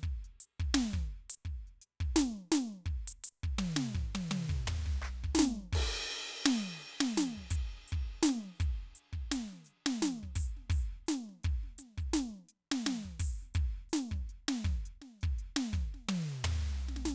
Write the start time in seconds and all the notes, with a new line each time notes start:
0.01 kick, hi-hat pedal
0.25 closed hi-hat
0.41 closed hi-hat
0.60 kick
0.75 snare
0.94 kick
1.30 closed hi-hat
1.46 kick
1.68 closed hi-hat
1.82 closed hi-hat
2.01 kick
2.17 snare
2.52 snare
2.86 kick
3.08 closed hi-hat
3.24 closed hi-hat
3.44 kick
3.59 high tom
3.77 snare
3.95 kick
4.15 high tom
4.32 high tom
4.50 kick
4.68 floor tom
4.86 kick
5.02 percussion
5.24 kick
5.35 snare
5.39 snare
5.73 kick, crash, ride
6.46 snare
6.80 hi-hat pedal
7.01 snare
7.16 snare, hi-hat pedal
7.37 kick
7.51 open hi-hat, kick
7.88 open hi-hat
7.93 kick
8.23 open hi-hat, snare
8.30 snare
8.42 snare
8.56 hi-hat pedal
8.61 closed hi-hat, kick
8.96 closed hi-hat
9.13 kick
9.32 closed hi-hat, snare
9.53 snare
9.65 closed hi-hat, hi-hat pedal
9.87 snare
10.01 snare, hi-hat pedal
10.24 kick
10.36 open hi-hat, kick
10.57 snare
10.62 snare
10.70 open hi-hat, kick
11.07 closed hi-hat, snare, hi-hat pedal
11.30 snare
11.44 kick, closed hi-hat
11.64 snare
11.79 closed hi-hat, snare
11.98 closed hi-hat, kick
12.14 closed hi-hat, snare
12.38 snare
12.49 closed hi-hat
12.72 snare
12.82 hi-hat pedal
12.87 snare
13.05 kick
13.20 open hi-hat, kick
13.43 snare
13.55 open hi-hat, kick
13.90 snare, hi-hat pedal
13.94 closed hi-hat
14.12 kick, snare
14.30 closed hi-hat
14.49 snare
14.65 kick, closed hi-hat
14.86 closed hi-hat
15.02 snare
15.22 kick, closed hi-hat
15.39 closed hi-hat
15.57 snare
15.74 kick, closed hi-hat
15.95 snare
16.09 high tom
16.38 hi-hat pedal
16.45 floor tom
16.80 hi-hat pedal
16.89 snare
16.97 snare
17.06 snare